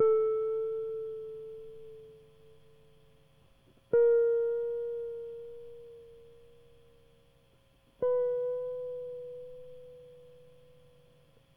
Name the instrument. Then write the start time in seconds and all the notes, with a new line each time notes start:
electric guitar
0.00 A4
3.93 A#4
8.02 B4